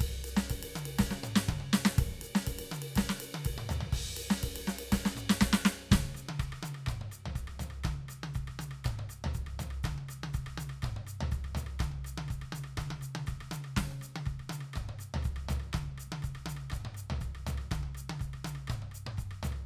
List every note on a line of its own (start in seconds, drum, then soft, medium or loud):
0.01 kick medium
0.01 hi-hat pedal medium
0.01 ride loud
0.25 hi-hat pedal medium
0.25 ride loud
0.37 snare loud
0.51 kick medium
0.51 hi-hat pedal medium
0.51 ride loud
0.63 ride loud
0.76 hi-hat pedal loud
0.76 high tom loud
0.86 ride loud
0.99 kick medium
0.99 snare loud
0.99 hi-hat pedal medium
0.99 ride loud
1.11 snare medium
1.24 hi-hat pedal medium
1.24 mid tom loud
1.36 snare loud
1.48 kick medium
1.48 hi-hat pedal medium
1.48 high tom loud
1.61 high tom medium
1.70 kick soft
1.70 snare loud
1.70 hi-hat pedal loud
1.86 snare loud
1.97 kick loud
1.97 hi-hat pedal medium
1.97 ride loud
2.22 hi-hat pedal medium
2.22 ride loud
2.36 snare loud
2.47 kick medium
2.47 hi-hat pedal medium
2.47 ride loud
2.59 ride loud
2.72 hi-hat pedal medium
2.72 high tom loud
2.83 ride loud
2.96 kick soft
2.96 kick medium
2.96 snare loud
2.96 hi-hat pedal medium
2.96 ride loud
3.10 snare medium
3.21 hi-hat pedal medium
3.21 ride loud
3.35 high tom loud
3.45 kick medium
3.45 hi-hat pedal medium
3.45 ride loud
3.58 mid tom loud
3.70 floor tom loud
3.70 hi-hat pedal medium
3.81 floor tom loud
3.93 kick medium
3.93 hi-hat pedal medium
3.93 ride loud
4.17 hi-hat pedal medium
4.17 ride loud
4.31 snare loud
4.43 kick medium
4.43 hi-hat pedal medium
4.43 ride loud
4.56 ride loud
4.68 snare loud
4.68 hi-hat pedal medium
4.79 ride loud
4.93 kick medium
4.93 snare loud
4.93 hi-hat pedal medium
4.93 ride loud
5.06 snare loud
5.16 kick soft
5.16 hi-hat pedal medium
5.16 mid tom loud
5.30 snare loud
5.41 kick medium
5.41 snare loud
5.41 hi-hat pedal medium
5.53 snare loud
5.63 kick soft
5.63 snare loud
5.63 hi-hat pedal medium
5.92 kick loud
5.92 snare loud
5.92 hi-hat pedal medium
5.92 high tom loud
6.15 cross-stick soft
6.15 hi-hat pedal medium
6.29 high tom loud
6.40 kick medium
6.40 cross-stick medium
6.40 hi-hat pedal medium
6.53 cross-stick medium
6.63 hi-hat pedal loud
6.63 high tom loud
6.75 cross-stick medium
6.87 kick medium
6.87 cross-stick medium
6.87 hi-hat pedal medium
6.87 mid tom loud
7.02 mid tom medium
7.12 cross-stick soft
7.12 hi-hat pedal medium
7.26 floor tom loud
7.36 kick medium
7.36 cross-stick soft
7.36 hi-hat pedal medium
7.48 cross-stick medium
7.60 floor tom loud
7.60 hi-hat pedal medium
7.71 cross-stick soft
7.84 kick medium
7.84 cross-stick medium
7.84 hi-hat pedal medium
7.84 high tom loud
8.09 cross-stick medium
8.09 hi-hat pedal medium
8.24 high tom loud
8.35 kick medium
8.35 cross-stick soft
8.35 hi-hat pedal medium
8.48 cross-stick medium
8.60 hi-hat pedal medium
8.60 high tom loud
8.72 cross-stick medium
8.85 kick medium
8.85 cross-stick medium
8.85 hi-hat pedal medium
8.85 mid tom loud
9.00 mid tom medium
9.10 cross-stick soft
9.10 hi-hat pedal medium
9.25 floor tom loud
9.34 kick medium
9.34 cross-stick soft
9.34 hi-hat pedal medium
9.47 cross-stick medium
9.60 floor tom loud
9.60 hi-hat pedal loud
9.71 cross-stick soft
9.84 kick medium
9.84 cross-stick medium
9.84 hi-hat pedal medium
9.84 high tom loud
9.98 high tom medium
10.03 high tom soft
10.09 cross-stick medium
10.09 hi-hat pedal loud
10.24 high tom loud
10.34 kick medium
10.34 cross-stick medium
10.34 hi-hat pedal medium
10.47 cross-stick medium
10.58 hi-hat pedal loud
10.58 high tom loud
10.70 cross-stick medium
10.83 kick medium
10.83 cross-stick medium
10.83 hi-hat pedal medium
10.83 mid tom loud
10.97 mid tom medium
11.07 cross-stick soft
11.07 hi-hat pedal loud
11.21 floor tom loud
11.32 kick medium
11.32 cross-stick soft
11.32 hi-hat pedal medium
11.45 cross-stick soft
11.55 floor tom loud
11.55 hi-hat pedal medium
11.67 cross-stick soft
11.80 kick medium
11.80 cross-stick medium
11.80 hi-hat pedal medium
11.80 high tom loud
11.92 high tom soft
11.95 high tom soft
12.05 cross-stick soft
12.05 hi-hat pedal loud
12.18 high tom loud
12.29 kick medium
12.29 cross-stick soft
12.29 hi-hat pedal medium
12.42 cross-stick medium
12.53 hi-hat pedal medium
12.53 high tom loud
12.64 cross-stick medium
12.78 kick medium
12.78 cross-stick medium
12.78 hi-hat pedal medium
12.78 high tom loud
12.91 high tom loud
13.02 cross-stick soft
13.02 hi-hat pedal medium
13.16 high tom loud
13.27 kick medium
13.27 cross-stick medium
13.27 hi-hat pedal medium
13.41 cross-stick medium
13.52 hi-hat pedal loud
13.52 high tom loud
13.65 cross-stick medium
13.77 kick medium
13.77 snare medium
13.77 hi-hat pedal medium
13.77 high tom loud
13.92 high tom medium
14.02 cross-stick soft
14.02 hi-hat pedal medium
14.16 high tom loud
14.26 kick medium
14.26 cross-stick soft
14.26 hi-hat pedal soft
14.40 cross-stick soft
14.50 hi-hat pedal medium
14.50 high tom loud
14.61 cross-stick medium
14.74 kick medium
14.74 cross-stick medium
14.74 hi-hat pedal medium
14.74 mid tom loud
14.89 mid tom medium
14.99 cross-stick soft
14.99 hi-hat pedal medium
15.15 floor tom loud
15.23 kick medium
15.23 cross-stick soft
15.23 hi-hat pedal medium
15.37 cross-stick medium
15.49 floor tom loud
15.49 hi-hat pedal medium
15.60 cross-stick soft
15.74 kick medium
15.74 cross-stick medium
15.74 hi-hat pedal medium
15.74 high tom loud
15.98 cross-stick soft
15.98 hi-hat pedal loud
16.13 high tom loud
16.23 kick medium
16.23 cross-stick soft
16.23 hi-hat pedal medium
16.36 cross-stick medium
16.46 hi-hat pedal medium
16.46 high tom loud
16.57 cross-stick medium
16.71 kick medium
16.71 cross-stick medium
16.71 hi-hat pedal medium
16.71 mid tom loud
16.86 mid tom loud
16.95 cross-stick soft
16.95 hi-hat pedal medium
17.11 floor tom loud
17.21 kick medium
17.21 cross-stick soft
17.21 hi-hat pedal medium
17.35 cross-stick soft
17.47 floor tom loud
17.47 hi-hat pedal medium
17.58 cross-stick medium
17.72 kick medium
17.72 cross-stick medium
17.72 hi-hat pedal medium
17.72 high tom loud
17.84 high tom medium
17.86 high tom soft
17.89 high tom soft
17.95 cross-stick soft
17.95 hi-hat pedal medium
18.10 high tom loud
18.20 kick medium
18.20 cross-stick soft
18.20 hi-hat pedal medium
18.34 cross-stick soft
18.45 hi-hat pedal medium
18.45 high tom loud
18.56 cross-stick soft
18.68 kick medium
18.68 cross-stick medium
18.68 hi-hat pedal medium
18.68 mid tom loud
18.83 mid tom medium
18.92 cross-stick soft
18.92 hi-hat pedal medium
19.07 mid tom loud
19.18 kick medium
19.18 cross-stick soft
19.18 hi-hat pedal medium
19.31 cross-stick medium
19.43 floor tom loud
19.43 hi-hat pedal medium
19.53 cross-stick soft